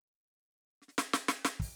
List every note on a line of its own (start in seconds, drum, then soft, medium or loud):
0.82 snare soft
0.88 snare soft
0.88 hi-hat pedal soft
0.98 snare loud
1.13 snare loud
1.28 snare loud
1.45 snare loud
1.60 open hi-hat medium
1.60 kick medium